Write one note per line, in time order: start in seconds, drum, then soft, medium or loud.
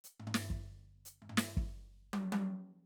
0.04 hi-hat pedal medium
0.19 floor tom medium
0.27 floor tom medium
0.34 snare medium
0.50 kick soft
1.05 hi-hat pedal medium
1.22 floor tom soft
1.29 floor tom medium
1.37 snare loud
1.57 kick medium
2.13 high tom loud
2.32 high tom loud